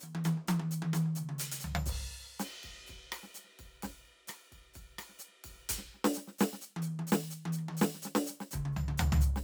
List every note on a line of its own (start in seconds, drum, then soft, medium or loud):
0.01 hi-hat pedal medium
0.01 high tom soft
0.15 high tom medium
0.25 hi-hat pedal medium
0.25 high tom loud
0.38 high tom soft
0.48 hi-hat pedal medium
0.48 high tom loud
0.60 high tom medium
0.72 hi-hat pedal medium
0.83 high tom loud
0.94 hi-hat pedal medium
0.94 high tom loud
1.06 high tom soft
1.16 hi-hat pedal medium
1.16 mid tom medium
1.29 mid tom medium
1.39 closed hi-hat loud
1.39 hi-hat pedal medium
1.52 closed hi-hat loud
1.61 hi-hat pedal medium
1.65 floor tom medium
1.76 floor tom loud
1.86 kick medium
1.86 hi-hat pedal medium
1.86 crash medium
2.40 snare medium
2.40 hi-hat pedal medium
2.40 ride medium
2.64 kick soft
2.64 snare soft
2.64 ride medium
2.70 kick soft
2.74 snare soft
2.77 snare soft
2.80 snare soft
2.84 snare soft
2.84 hi-hat pedal soft
2.88 kick soft
2.88 ride soft
2.95 kick soft
3.13 cross-stick medium
3.13 ride loud
3.24 snare soft
3.35 snare soft
3.35 hi-hat pedal medium
3.35 ride soft
3.45 snare soft
3.48 snare soft
3.60 kick soft
3.60 ride medium
3.65 kick soft
3.83 kick soft
3.83 snare medium
3.83 hi-hat pedal soft
3.83 ride medium
3.89 kick soft
4.06 ride soft
4.28 cross-stick medium
4.28 hi-hat pedal medium
4.28 ride medium
4.52 kick soft
4.52 ride soft
4.74 kick soft
4.74 hi-hat pedal soft
4.74 ride medium
4.99 cross-stick medium
4.99 ride medium
5.10 snare soft
5.19 hi-hat pedal medium
5.29 snare soft
5.45 kick soft
5.45 ride medium
5.50 kick soft
5.55 snare soft
5.70 kick soft
5.70 closed hi-hat loud
5.76 kick soft
5.76 snare soft
5.95 snare soft
6.05 snare loud
6.14 snare soft
6.14 hi-hat pedal medium
6.28 snare soft
6.39 snare loud
6.39 hi-hat pedal medium
6.53 snare soft
6.62 hi-hat pedal medium
6.77 high tom medium
6.83 hi-hat pedal medium
7.00 high tom medium
7.08 hi-hat pedal medium
7.13 snare loud
7.24 high tom soft
7.31 hi-hat pedal medium
7.46 high tom medium
7.53 hi-hat pedal medium
7.59 cross-stick soft
7.69 high tom medium
7.77 hi-hat pedal medium
7.82 snare loud
7.95 snare soft
8.03 snare medium
8.03 hi-hat pedal medium
8.16 snare medium
8.27 snare soft
8.27 hi-hat pedal loud
8.41 snare medium
8.51 kick medium
8.51 hi-hat pedal medium
8.51 mid tom medium
8.66 mid tom medium
8.73 kick soft
8.73 hi-hat pedal soft
8.77 floor tom medium
8.89 mid tom medium
8.98 hi-hat pedal medium
8.98 floor tom loud
9.13 floor tom loud
9.21 hi-hat pedal medium
9.37 snare medium